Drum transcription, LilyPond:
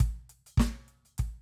\new DrumStaff \drummode { \time 4/4 \tempo 4 = 100 <bd hh>8 hh16 hh16 <bd sn>8 hh16 hh16 <hh bd>4 r4 | }